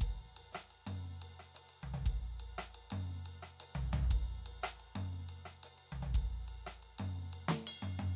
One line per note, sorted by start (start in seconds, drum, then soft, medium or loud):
0.01 kick medium
0.01 ride loud
0.37 ride loud
0.52 cross-stick medium
0.52 hi-hat pedal medium
0.71 ride medium
0.87 mid tom medium
0.87 ride loud
1.22 ride loud
1.39 cross-stick soft
1.54 hi-hat pedal medium
1.54 ride loud
1.69 ride medium
1.83 kick soft
1.83 floor tom medium
1.94 floor tom medium
2.06 kick medium
2.06 ride loud
2.40 ride loud
2.58 cross-stick medium
2.58 hi-hat pedal medium
2.75 ride loud
2.91 mid tom loud
2.91 ride loud
3.26 ride loud
3.43 cross-stick soft
3.60 hi-hat pedal medium
3.60 ride loud
3.75 floor tom medium
3.93 floor tom loud
4.11 kick medium
4.11 ride loud
4.46 ride loud
4.62 cross-stick medium
4.62 hi-hat pedal medium
4.80 ride medium
4.96 mid tom medium
4.96 ride loud
5.29 ride medium
5.45 cross-stick soft
5.63 hi-hat pedal medium
5.63 ride loud
5.78 ride medium
5.92 floor tom medium
6.03 floor tom medium
6.14 kick medium
6.14 ride loud
6.48 ride medium
6.66 cross-stick medium
6.66 hi-hat pedal medium
6.83 ride medium
6.99 mid tom loud
6.99 ride loud
7.33 ride loud
7.49 snare medium
7.67 hi-hat pedal medium
7.67 ride bell loud
7.82 mid tom medium
7.99 mid tom loud
7.99 ride medium